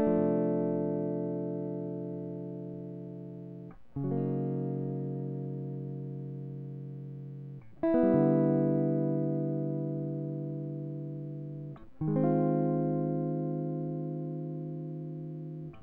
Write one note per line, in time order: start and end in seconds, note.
0.00 3.70 A3
0.08 3.76 F3
0.14 3.59 C3
3.97 7.63 C#3
4.05 7.63 F#3
4.11 6.54 A#3
4.11 5.88 D#4
6.67 6.79 A#3
7.83 11.78 E4
7.94 11.75 B3
8.04 11.81 G3
8.15 11.85 D3
12.02 15.73 D#3
12.08 15.29 G#3
12.16 15.68 C4
12.24 15.74 F4